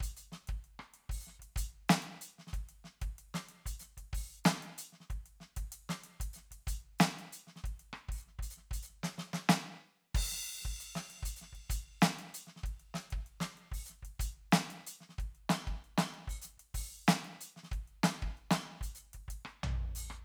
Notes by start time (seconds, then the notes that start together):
0.01 closed hi-hat, kick
0.17 closed hi-hat
0.32 snare
0.48 kick, closed hi-hat
0.65 closed hi-hat
0.80 cross-stick
0.94 closed hi-hat
1.10 open hi-hat, kick
1.21 hi-hat pedal
1.27 snare
1.40 kick, closed hi-hat
1.57 open hi-hat, kick
1.89 snare, hi-hat pedal
2.03 closed hi-hat
2.22 closed hi-hat
2.39 snare
2.47 snare
2.54 kick, closed hi-hat
2.69 closed hi-hat
2.85 snare
3.02 kick, closed hi-hat
3.19 closed hi-hat
3.35 snare
3.49 closed hi-hat
3.66 closed hi-hat, kick
3.80 snare, hi-hat pedal
3.98 kick, closed hi-hat
4.14 open hi-hat, kick
4.45 snare, hi-hat pedal
4.63 closed hi-hat
4.79 closed hi-hat
4.93 snare
5.01 snare
5.11 kick, closed hi-hat
5.26 closed hi-hat
5.41 snare
5.57 kick, closed hi-hat
5.73 closed hi-hat
5.90 snare
6.04 closed hi-hat
6.21 kick, open hi-hat
6.34 snare, hi-hat pedal
6.52 kick, closed hi-hat
6.68 open hi-hat, kick
6.99 snare, hi-hat pedal
7.19 closed hi-hat
7.33 closed hi-hat
7.48 snare
7.56 snare
7.64 kick, closed hi-hat
7.80 closed hi-hat
7.94 cross-stick
8.09 kick, open hi-hat
8.18 hi-hat pedal
8.28 snare
8.39 open hi-hat, kick
8.51 hi-hat pedal
8.58 snare
8.72 open hi-hat, kick
8.83 hi-hat pedal
8.89 snare
9.04 snare
9.19 snare
9.34 snare
9.50 snare
10.15 kick, crash
10.32 snare
10.47 closed hi-hat
10.62 kick, snare
10.81 closed hi-hat
10.96 snare
11.11 closed hi-hat
11.23 open hi-hat, kick
11.37 hi-hat pedal
11.42 snare
11.53 kick, closed hi-hat
11.70 open hi-hat, kick
12.02 snare, hi-hat pedal
12.19 closed hi-hat
12.35 closed hi-hat
12.47 snare
12.57 snare
12.64 kick, closed hi-hat
12.80 closed hi-hat
12.95 snare
13.11 kick, closed hi-hat
13.27 closed hi-hat
13.41 snare
13.58 closed hi-hat
13.72 open hi-hat, kick
13.86 snare, hi-hat pedal
14.03 kick, closed hi-hat
14.20 open hi-hat, kick
14.52 snare, hi-hat pedal
14.71 closed hi-hat
14.87 closed hi-hat
15.01 snare
15.10 snare
15.19 kick, closed hi-hat
15.36 closed hi-hat
15.50 snare
15.68 kick, closed hi-hat
15.85 closed hi-hat
15.98 snare
16.14 closed hi-hat
16.28 open hi-hat, kick
16.42 snare, hi-hat pedal
16.58 kick, closed hi-hat
16.75 open hi-hat, kick
17.08 snare, hi-hat pedal
17.16 snare
17.25 closed hi-hat
17.41 closed hi-hat
17.57 snare
17.64 snare
17.72 kick, closed hi-hat
17.88 closed hi-hat
18.04 snare
18.23 kick, closed hi-hat
18.38 closed hi-hat
18.51 snare
18.81 open hi-hat, kick
18.96 hi-hat pedal
19.14 kick, closed hi-hat
19.29 kick, closed hi-hat
19.46 cross-stick
19.64 floor tom
19.96 hi-hat pedal
20.11 cross-stick